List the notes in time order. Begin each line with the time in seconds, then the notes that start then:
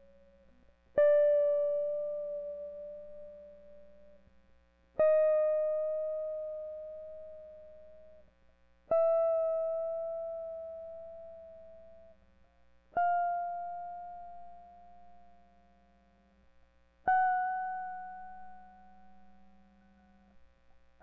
0.98 D5
4.99 D#5
8.91 E5
12.97 F5
17.07 F#5